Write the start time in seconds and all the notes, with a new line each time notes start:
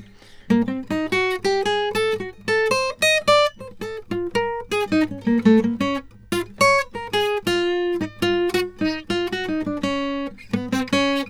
0.51 A#3
0.69 C4
0.92 D#4
1.13 F#4
1.46 G4
1.67 G#4
1.96 A4
2.22 F#4
2.49 A4
2.72 C5
3.03 D#5
3.29 D5
3.62 C5
3.82 A4
4.12 F4
4.36 A#4
4.73 G#4
4.93 D#4
5.04 C#4
5.28 A#3
5.46 A3
5.66 A#3
5.82 C#4
6.33 F4
6.62 C#5
6.96 A#4
7.15 G#4
7.48 F4
8.23 F4
8.55 F#4
8.82 D#4
9.11 F4
9.34 F#4
9.50 D#4
9.68 D4
9.85 C#4
10.55 B3
10.74 C4
10.94 C#4